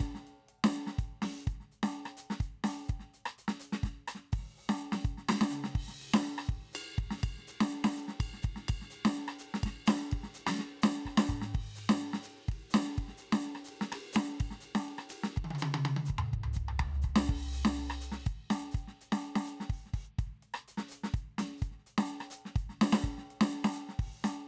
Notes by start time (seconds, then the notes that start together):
0.01 closed hi-hat, kick
0.07 kick
0.15 snare
0.28 closed hi-hat
0.49 closed hi-hat
0.65 snare
0.76 closed hi-hat
0.88 snare
0.99 open hi-hat, kick
1.05 kick
1.23 open hi-hat, snare
1.41 hi-hat pedal
1.48 closed hi-hat, kick
1.53 kick, snare
1.61 snare
1.72 closed hi-hat
1.84 snare
1.97 closed hi-hat
2.06 cross-stick
2.18 hi-hat pedal
2.31 snare
2.41 closed hi-hat, kick
2.65 open hi-hat, snare
2.85 hi-hat pedal
2.89 closed hi-hat, kick
3.00 snare
3.10 snare
3.14 closed hi-hat
3.26 cross-stick
3.39 closed hi-hat
3.49 snare
3.60 closed hi-hat, hi-hat pedal
3.73 snare
3.84 closed hi-hat, kick, snare
4.08 closed hi-hat, cross-stick
4.16 snare
4.33 open hi-hat, kick
4.39 kick, snare
4.46 snare
4.58 open hi-hat
4.70 snare
4.74 hi-hat pedal
4.83 closed hi-hat
4.93 snare
5.05 closed hi-hat, kick
5.11 kick
5.14 kick, snare
5.29 snare
5.42 snare
5.51 hi-hat pedal, high tom
5.65 snare
5.76 kick, crash
5.89 snare
6.02 ride
6.14 snare
6.21 hi-hat pedal
6.26 ride
6.39 cross-stick
6.45 hi-hat pedal
6.49 kick, ride
6.55 kick
6.58 kick
6.74 hi-hat pedal, ride bell
6.99 kick, ride
7.04 kick
7.07 kick
7.11 snare
7.18 hi-hat pedal
7.24 kick, ride bell
7.30 kick
7.39 snare
7.48 hi-hat pedal, ride
7.61 snare
7.75 ride
7.85 snare
7.97 hi-hat pedal, ride
8.09 snare
8.21 kick, ride bell
8.26 kick
8.34 snare
8.43 kick, hi-hat pedal, ride
8.57 snare
8.69 kick, ride bell
8.79 kick, snare
8.91 hi-hat pedal
8.95 ride
9.06 snare
9.20 ride
9.29 cross-stick
9.39 hi-hat pedal, ride
9.55 snare
9.64 kick, snare, ride bell
9.87 snare, hi-hat pedal, ride
10.12 kick, ride
10.24 snare
10.35 hi-hat pedal
10.39 snare
10.47 snare
10.56 snare, hi-hat pedal
10.83 snare, hi-hat pedal
11.06 kick, cross-stick
11.18 snare
11.29 kick, hi-hat pedal, mid tom
11.42 snare
11.55 kick, crash
11.59 kick, snare
11.64 snare
11.76 hi-hat pedal, ride bell
11.90 snare
12.02 ride
12.14 snare
12.23 hi-hat pedal, ride
12.49 kick, ride
12.71 snare, hi-hat pedal
12.75 ride
12.84 snare
12.98 kick, ride
13.09 snare
13.18 hi-hat pedal
13.23 ride
13.33 snare
13.46 ride
13.56 cross-stick
13.65 hi-hat pedal
13.69 ride
13.82 snare
13.93 cross-stick, ride
14.13 snare, hi-hat pedal, ride
14.41 kick, ride bell
14.47 kick
14.51 snare
14.61 hi-hat pedal
14.65 ride
14.76 snare
14.89 ride
14.99 cross-stick
15.10 hi-hat pedal, ride
15.24 snare
15.37 kick, high tom
15.45 high tom
15.51 high tom
15.56 hi-hat pedal, high tom
15.63 high tom
15.68 high tom
15.75 high tom
15.86 high tom
15.97 high tom
16.06 hi-hat pedal, mid tom
16.10 kick
16.19 mid tom
16.34 kick
16.44 floor tom
16.54 kick, hi-hat pedal
16.69 floor tom
16.80 kick, floor tom
16.94 snare
17.03 kick, floor tom, hi-hat pedal
17.10 kick
17.16 snare
17.30 kick, crash
17.37 kick, cross-stick
17.53 closed hi-hat, hi-hat pedal
17.66 snare
17.79 closed hi-hat
17.91 cross-stick
18.01 closed hi-hat, hi-hat pedal
18.12 snare
18.27 closed hi-hat, kick
18.51 closed hi-hat, snare
18.72 kick, hi-hat pedal
18.77 closed hi-hat
18.88 snare
19.02 closed hi-hat
19.13 snare
19.25 closed hi-hat
19.36 snare
19.46 closed hi-hat, hi-hat pedal
19.61 snare
19.70 open hi-hat, kick
19.87 snare
19.94 open hi-hat, kick
20.19 closed hi-hat, kick
20.28 kick
20.43 closed hi-hat
20.55 cross-stick
20.68 closed hi-hat
20.78 snare
20.89 closed hi-hat, hi-hat pedal
21.04 snare
21.14 closed hi-hat, kick
21.39 closed hi-hat, snare
21.58 hi-hat pedal
21.63 closed hi-hat, kick
21.72 snare
21.79 snare
21.87 closed hi-hat
21.99 snare
22.04 hi-hat pedal
22.10 closed hi-hat
22.21 cross-stick
22.31 closed hi-hat, hi-hat pedal
22.46 snare
22.56 closed hi-hat, kick
22.63 kick
22.70 snare
22.82 snare
22.93 snare
23.04 closed hi-hat, kick
23.10 kick
23.18 snare
23.31 closed hi-hat
23.42 snare
23.54 closed hi-hat
23.65 snare
23.74 closed hi-hat, hi-hat pedal
23.89 snare
24.00 open hi-hat, kick
24.08 kick
24.22 closed hi-hat, snare, hi-hat pedal